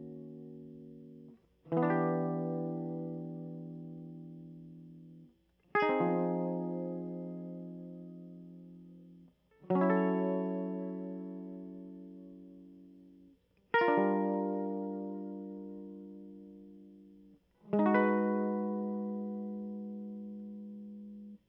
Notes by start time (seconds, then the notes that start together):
1.73 E3
1.77 B3
1.83 D4
1.90 G4
5.75 G#4
5.83 D#4
5.90 C4
6.01 F3
6.09 B2
9.71 F#3
9.76 C#4
9.82 E4
9.90 A4
13.75 A#4
13.81 F4
13.88 D4
13.98 G3
17.74 G#3
17.79 D#4
17.86 F#4
17.95 B4